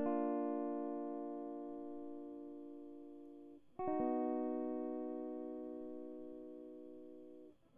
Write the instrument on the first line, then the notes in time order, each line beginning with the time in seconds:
electric guitar
0.01 A#3 D4
0.06 F4
3.80 F#4
3.88 D#4
4.01 B3